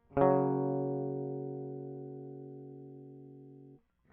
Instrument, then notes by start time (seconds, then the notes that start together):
electric guitar
0.18 C#3 F#3